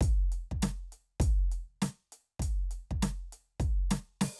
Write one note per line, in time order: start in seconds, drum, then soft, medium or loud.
0.01 kick loud
0.01 closed hi-hat loud
0.32 closed hi-hat medium
0.52 kick medium
0.62 snare loud
0.62 closed hi-hat loud
0.92 closed hi-hat medium
1.20 kick loud
1.20 closed hi-hat loud
1.52 closed hi-hat medium
1.82 closed hi-hat loud
1.82 snare loud
2.12 closed hi-hat medium
2.40 kick medium
2.40 closed hi-hat loud
2.71 closed hi-hat medium
2.91 kick medium
3.03 snare loud
3.03 closed hi-hat loud
3.33 closed hi-hat medium
3.60 kick loud
3.60 closed hi-hat medium
3.91 snare loud
3.91 closed hi-hat loud
4.21 snare loud
4.21 open hi-hat loud